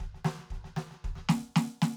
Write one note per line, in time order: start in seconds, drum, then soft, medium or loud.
0.01 kick soft
0.01 snare soft
0.15 snare soft
0.25 snare loud
0.39 snare soft
0.51 kick soft
0.51 snare soft
0.65 snare soft
0.77 snare loud
0.92 snare soft
1.05 kick medium
1.05 snare soft
1.16 snare soft
1.29 snare loud
1.56 snare loud
1.82 snare loud